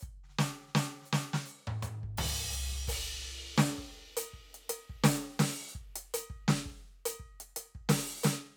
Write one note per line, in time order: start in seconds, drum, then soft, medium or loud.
0.01 kick medium
0.01 hi-hat pedal soft
0.24 snare soft
0.30 snare soft
0.40 snare loud
0.62 snare soft
0.69 snare soft
0.76 snare loud
0.95 snare soft
1.03 snare soft
1.03 hi-hat pedal soft
1.14 snare medium
1.34 snare medium
1.46 hi-hat pedal medium
1.68 high tom medium
1.83 hi-hat pedal medium
1.83 high tom medium
2.04 kick medium
2.18 floor tom loud
2.18 crash loud
2.40 kick soft
2.53 hi-hat pedal medium
2.73 kick soft
2.88 open hi-hat loud
2.88 kick medium
2.88 ride loud
3.58 snare loud
3.58 hi-hat pedal soft
3.79 kick soft
4.18 closed hi-hat loud
4.34 kick soft
4.55 closed hi-hat medium
4.70 closed hi-hat loud
4.90 kick soft
5.05 open hi-hat loud
5.05 snare loud
5.40 open hi-hat loud
5.40 snare loud
5.72 hi-hat pedal soft
5.76 kick medium
5.97 closed hi-hat medium
6.15 closed hi-hat loud
6.31 kick medium
6.49 snare loud
6.67 kick soft
7.06 closed hi-hat loud
7.21 kick soft
7.41 closed hi-hat medium
7.57 closed hi-hat loud
7.76 kick soft
7.90 open hi-hat loud
7.90 snare loud
8.24 open hi-hat loud
8.24 snare loud